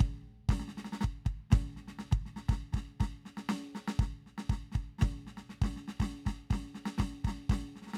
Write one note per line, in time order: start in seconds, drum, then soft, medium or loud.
0.01 kick medium
0.49 kick medium
0.49 snare loud
0.60 snare soft
0.68 snare soft
0.78 snare soft
0.85 snare soft
0.93 snare soft
1.01 kick soft
1.01 snare medium
1.26 kick soft
1.26 snare soft
1.51 kick loud
1.51 snare soft
1.51 snare medium
1.77 snare soft
1.88 snare soft
1.99 snare soft
2.12 kick medium
2.12 snare soft
2.26 snare soft
2.37 snare soft
2.49 kick medium
2.49 snare soft
2.51 snare medium
2.73 kick soft
2.73 snare soft
2.76 snare medium
3.01 kick medium
3.01 snare medium
3.26 snare soft
3.38 snare soft
3.50 snare medium
3.76 snare soft
3.88 snare medium
4.00 kick medium
4.00 snare medium
4.27 snare soft
4.38 snare medium
4.50 kick medium
4.50 snare medium
4.72 snare soft
4.75 kick soft
4.75 snare soft
4.99 snare soft
5.02 kick medium
5.02 snare medium
5.27 snare soft
5.38 snare soft
5.50 snare soft
5.62 kick medium
5.62 snare soft
5.62 snare medium
5.77 snare soft
5.88 snare medium
6.00 kick soft
6.00 snare medium
6.02 snare medium
6.26 kick soft
6.26 snare soft
6.28 snare medium
6.51 kick medium
6.51 snare medium
6.53 snare medium
6.75 snare soft
6.86 snare medium
6.98 kick soft
6.98 snare medium
7.01 snare medium
7.25 kick soft
7.25 snare soft
7.28 snare medium
7.50 kick medium
7.50 snare medium
7.50 snare loud
7.76 snare soft
7.83 snare soft
7.87 snare soft
7.94 snare medium